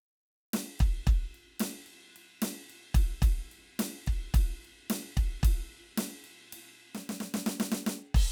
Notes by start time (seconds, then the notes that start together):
0.53 snare, ride
0.79 kick, ride
1.07 kick, ride
1.34 ride
1.60 snare, ride
1.86 ride
2.16 ride
2.42 snare, ride
2.70 ride
2.94 kick, ride
3.22 kick, ride
3.51 ride
3.79 snare, ride
4.07 kick, ride
4.34 kick, ride
4.65 ride
4.90 snare, ride
5.17 kick, ride
5.43 kick, ride
5.97 snare, ride
6.24 ride
6.52 ride
6.95 snare
7.09 snare
7.20 snare
7.34 snare
7.46 snare
7.60 snare
7.72 snare
7.86 snare
8.14 kick, crash